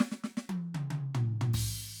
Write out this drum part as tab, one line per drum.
CC |------------x---|
SD |oooo------------|
T1 |----o-----------|
T2 |------oo--------|
FT |---------o-o----|
BD |------------o---|